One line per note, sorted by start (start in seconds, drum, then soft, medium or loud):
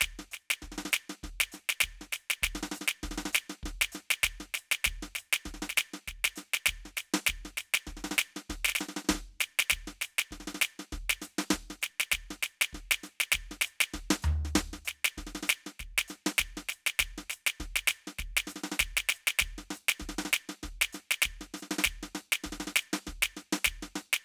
0.01 kick soft
0.01 snare loud
0.19 snare soft
0.31 snare soft
0.31 hi-hat pedal soft
0.50 snare loud
0.62 kick soft
0.62 snare soft
0.72 snare soft
0.78 snare medium
0.85 snare medium
0.92 snare loud
0.92 hi-hat pedal medium
1.10 snare medium
1.23 kick soft
1.23 snare soft
1.40 snare loud
1.52 snare soft
1.52 hi-hat pedal medium
1.69 snare medium
1.81 kick soft
1.81 snare loud
2.01 snare soft
2.12 snare medium
2.12 hi-hat pedal medium
2.30 snare medium
2.43 kick soft
2.43 snare loud
2.55 snare medium
2.63 snare medium
2.72 snare medium
2.72 hi-hat pedal medium
2.81 snare soft
2.88 snare loud
3.03 kick soft
3.03 snare medium
3.11 snare soft
3.18 snare medium
3.26 snare medium
3.33 snare loud
3.33 hi-hat pedal medium
3.50 snare medium
3.63 kick soft
3.63 snare medium
3.81 snare loud
3.92 snare soft
3.92 hi-hat pedal medium
4.11 snare loud
4.23 kick soft
4.23 snare loud
4.40 snare soft
4.54 snare medium
4.54 hi-hat pedal medium
4.72 snare loud
4.84 kick soft
4.84 snare loud
5.03 snare soft
5.15 snare medium
5.15 hi-hat pedal medium
5.33 snare loud
5.45 kick soft
5.45 snare soft
5.54 snare soft
5.62 snare medium
5.69 snare medium
5.77 snare loud
5.77 hi-hat pedal medium
5.94 snare soft
6.08 kick soft
6.08 snare medium
6.24 snare loud
6.36 snare soft
6.36 hi-hat pedal medium
6.54 snare loud
6.66 kick soft
6.66 snare loud
6.85 snare soft
6.97 snare medium
6.97 hi-hat pedal medium
7.14 snare loud
7.27 kick soft
7.27 snare loud
7.45 snare soft
7.57 snare medium
7.57 hi-hat pedal medium
7.74 snare loud
7.87 kick soft
7.87 snare soft
8.04 snare medium
8.11 snare medium
8.18 snare loud
8.18 hi-hat pedal medium
8.36 snare medium
8.50 kick soft
8.50 snare medium
8.65 snare loud
8.69 snare medium
8.75 snare medium
8.75 hi-hat pedal medium
8.81 snare medium
8.89 snare soft
8.96 snare medium
9.05 snare soft
9.09 kick soft
9.09 snare loud
9.15 snare soft
9.40 snare medium
9.40 hi-hat pedal medium
9.59 snare loud
9.70 kick soft
9.70 snare loud
9.87 snare soft
10.02 snare medium
10.02 hi-hat pedal medium
10.18 snare loud
10.31 kick soft
10.31 snare soft
10.40 snare soft
10.47 snare medium
10.55 snare medium
10.62 snare loud
10.62 hi-hat pedal medium
10.79 snare soft
10.92 kick soft
10.92 snare soft
11.10 snare loud
11.22 snare soft
11.22 hi-hat pedal medium
11.39 snare medium
11.50 kick soft
11.50 snare loud
11.70 snare soft
11.82 snare medium
11.82 hi-hat pedal soft
12.00 snare loud
12.12 kick soft
12.12 snare loud
12.31 snare soft
12.43 snare medium
12.43 hi-hat pedal medium
12.61 snare loud
12.73 kick soft
12.73 snare soft
12.91 snare loud
13.03 snare soft
13.03 hi-hat pedal soft
13.20 snare loud
13.32 kick soft
13.32 snare loud
13.51 snare soft
13.61 snare loud
13.61 hi-hat pedal medium
13.81 snare loud
13.94 kick soft
13.94 snare medium
14.10 snare loud
14.22 floor tom loud
14.22 hi-hat pedal medium
14.45 snare soft
14.55 kick soft
14.55 snare loud
14.73 snare soft
14.85 snare medium
14.85 hi-hat pedal medium
15.05 snare loud
15.18 kick soft
15.18 snare soft
15.27 snare soft
15.35 snare medium
15.43 snare medium
15.47 snare loud
15.47 hi-hat pedal medium
15.66 snare soft
15.80 kick soft
15.80 snare soft
15.98 snare loud
16.08 snare soft
16.08 hi-hat pedal medium
16.26 snare loud
16.38 kick soft
16.38 snare loud
16.57 snare medium
16.69 snare medium
16.69 hi-hat pedal medium
16.87 snare loud
16.99 kick soft
16.99 snare loud
17.18 snare soft
17.30 snare medium
17.30 hi-hat pedal medium
17.47 snare loud
17.60 kick soft
17.60 snare soft
17.76 snare medium
17.88 snare loud
17.88 hi-hat pedal medium
18.07 snare soft
18.19 kick soft
18.19 snare medium
18.37 snare loud
18.47 snare soft
18.47 hi-hat pedal medium
18.56 snare soft
18.64 snare medium
18.72 snare medium
18.80 kick soft
18.80 snare loud
18.97 snare loud
19.09 snare loud
19.13 hi-hat pedal soft
19.27 snare loud
19.39 kick soft
19.39 snare loud
19.58 snare soft
19.71 snare medium
19.71 hi-hat pedal soft
19.89 snare loud
20.00 kick soft
20.00 snare soft
20.09 snare medium
20.18 snare medium
20.25 snare medium
20.33 snare loud
20.33 hi-hat pedal soft
20.49 snare medium
20.63 kick soft
20.63 snare soft
20.81 snare loud
20.93 snare soft
20.93 hi-hat pedal medium
21.11 snare loud
21.22 kick soft
21.22 snare loud
21.41 snare soft
21.54 snare medium
21.54 hi-hat pedal soft
21.63 snare soft
21.71 snare medium
21.79 snare medium
21.84 kick soft
21.84 snare loud
22.03 snare medium
22.15 snare medium
22.15 hi-hat pedal soft
22.32 snare loud
22.44 kick soft
22.44 snare medium
22.52 snare medium
22.60 snare medium
22.67 snare medium
22.76 snare loud
22.76 hi-hat pedal soft
22.93 snare medium
23.07 kick soft
23.07 snare soft
23.22 snare loud
23.37 snare soft
23.37 hi-hat pedal soft
23.53 snare loud
23.65 kick soft
23.65 snare loud
23.83 snare soft
23.96 snare medium
23.96 hi-hat pedal soft
24.13 snare loud